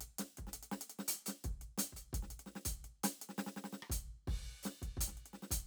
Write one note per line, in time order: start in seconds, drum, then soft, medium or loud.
0.01 closed hi-hat medium
0.19 snare medium
0.19 closed hi-hat medium
0.37 kick soft
0.37 closed hi-hat soft
0.47 snare soft
0.54 closed hi-hat medium
0.63 closed hi-hat medium
0.72 snare medium
0.81 closed hi-hat medium
0.90 closed hi-hat medium
0.99 snare soft
1.08 closed hi-hat loud
1.26 closed hi-hat medium
1.26 snare soft
1.44 kick medium
1.44 closed hi-hat medium
1.61 closed hi-hat soft
1.78 closed hi-hat loud
1.78 snare medium
1.93 closed hi-hat medium
1.93 kick soft
2.13 kick medium
2.13 closed hi-hat medium
2.23 snare soft
2.31 closed hi-hat medium
2.40 closed hi-hat soft
2.46 snare soft
2.56 snare soft
2.65 closed hi-hat loud
2.65 kick soft
2.84 closed hi-hat soft
3.04 closed hi-hat loud
3.04 snare medium
3.22 closed hi-hat medium
3.29 snare soft
3.38 snare medium
3.47 snare soft
3.57 snare soft
3.64 snare soft
3.73 snare soft
3.83 cross-stick medium
3.90 closed hi-hat medium
3.90 kick medium
4.28 kick medium
4.28 crash soft
4.63 closed hi-hat medium
4.63 snare medium
4.63 hi-hat pedal medium
4.82 kick soft
4.82 closed hi-hat soft
4.97 closed hi-hat loud
4.97 kick medium
5.08 snare soft
5.17 closed hi-hat soft
5.26 closed hi-hat soft
5.34 snare soft
5.43 snare soft
5.51 closed hi-hat loud
5.51 kick medium